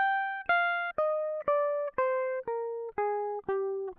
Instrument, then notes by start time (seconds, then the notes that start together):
electric guitar
0.00 G5
0.50 F5
0.99 D#5
1.48 D5
1.99 C5
2.48 A#4
2.98 G#4
3.49 G4